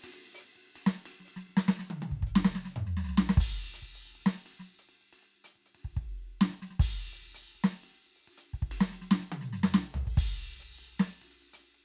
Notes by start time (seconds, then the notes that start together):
0.01 hi-hat pedal, ride
0.14 closed hi-hat
0.22 crash
0.35 open hi-hat
0.41 hi-hat pedal
0.45 ride
0.56 ride
0.76 ride bell
0.87 snare, hi-hat pedal
1.06 ride bell
1.20 snare
1.25 hi-hat pedal, ride bell
1.37 snare
1.49 snare
1.57 snare
1.68 snare, hi-hat pedal
1.79 snare
1.87 hi-hat pedal, high tom
2.02 high tom
2.12 kick
2.23 kick, hi-hat pedal
2.36 snare
2.45 snare
2.55 snare
2.65 snare
2.71 hi-hat pedal
2.76 mid tom
2.87 snare
2.97 snare
3.04 snare, hi-hat pedal
3.09 snare
3.13 snare
3.18 snare
3.30 snare
3.38 kick, crash
3.45 hi-hat pedal
3.51 closed hi-hat
3.64 ride bell
3.74 closed hi-hat
3.82 kick, ride bell
3.95 closed hi-hat
4.06 ride
4.16 ride bell
4.26 snare
4.46 ride bell
4.60 snare
4.70 ride
4.79 closed hi-hat
4.89 ride bell
5.01 closed hi-hat
5.13 ride bell
5.23 closed hi-hat
5.36 ride
5.45 closed hi-hat
5.56 ride
5.66 closed hi-hat
5.75 ride
5.85 kick
5.97 kick
6.04 mid tom, ride, floor tom
6.41 snare, hi-hat pedal
6.52 snare
6.62 snare
6.71 snare
6.80 kick, hi-hat pedal, crash
7.13 closed hi-hat
7.24 ride
7.35 closed hi-hat
7.45 ride
7.55 ride
7.64 snare
7.84 ride bell
8.07 ride bell
8.16 open hi-hat
8.28 ride
8.38 closed hi-hat
8.54 kick
8.62 kick
8.72 ride bell
8.81 snare
8.92 snare
9.02 snare
9.11 snare
9.22 snare
9.32 high tom
9.41 snare
9.53 snare
9.64 snare
9.74 snare
9.88 crash
9.95 floor tom
10.07 kick, crash
10.17 kick, crash
10.60 hi-hat pedal
10.79 ride bell
11.00 snare, hi-hat pedal
11.22 ride
11.32 closed hi-hat
11.43 ride
11.54 closed hi-hat
11.65 ride bell
11.75 closed hi-hat